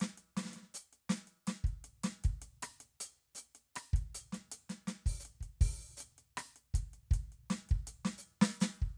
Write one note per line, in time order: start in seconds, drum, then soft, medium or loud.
0.01 snare medium
0.01 closed hi-hat soft
0.18 closed hi-hat soft
0.38 snare medium
0.38 closed hi-hat soft
0.42 snare soft
0.46 snare soft
0.50 snare soft
0.50 closed hi-hat soft
0.57 snare soft
0.63 snare soft
0.70 snare soft
0.75 hi-hat pedal medium
0.93 closed hi-hat soft
1.10 snare medium
1.10 closed hi-hat soft
1.28 closed hi-hat soft
1.48 snare medium
1.48 closed hi-hat medium
1.65 kick soft
1.65 closed hi-hat soft
1.85 closed hi-hat soft
2.04 snare medium
2.04 closed hi-hat medium
2.25 kick soft
2.25 closed hi-hat soft
2.43 closed hi-hat soft
2.63 cross-stick medium
2.63 closed hi-hat medium
2.81 closed hi-hat soft
3.01 closed hi-hat medium
3.36 closed hi-hat soft
3.36 hi-hat pedal medium
3.56 closed hi-hat soft
3.76 cross-stick medium
3.76 closed hi-hat medium
3.94 kick soft
3.94 closed hi-hat soft
4.15 closed hi-hat medium
4.33 snare soft
4.33 closed hi-hat soft
4.52 closed hi-hat medium
4.70 snare soft
4.70 closed hi-hat soft
4.88 snare soft
4.88 closed hi-hat soft
5.07 open hi-hat medium
5.07 kick soft
5.21 hi-hat pedal medium
5.26 closed hi-hat soft
5.41 kick soft
5.41 closed hi-hat soft
5.62 open hi-hat medium
5.62 kick medium
5.98 closed hi-hat soft
5.98 hi-hat pedal medium
6.19 closed hi-hat soft
6.38 cross-stick medium
6.38 closed hi-hat soft
6.40 cross-stick soft
6.57 closed hi-hat soft
6.75 kick soft
6.75 closed hi-hat medium
6.94 closed hi-hat soft
7.12 kick soft
7.12 closed hi-hat soft
7.33 closed hi-hat soft
7.51 snare medium
7.51 closed hi-hat soft
7.70 kick soft
7.70 closed hi-hat soft
7.88 closed hi-hat medium
8.05 snare medium
8.19 hi-hat pedal medium
8.42 snare medium
8.61 snare medium
8.61 hi-hat pedal medium
8.82 kick soft